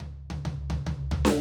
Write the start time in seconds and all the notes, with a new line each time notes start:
0.05 floor tom, high tom
0.30 floor tom, high tom
0.45 floor tom, high tom
0.70 floor tom, high tom
0.86 floor tom, high tom
1.11 floor tom, high tom
1.25 snare
1.28 snare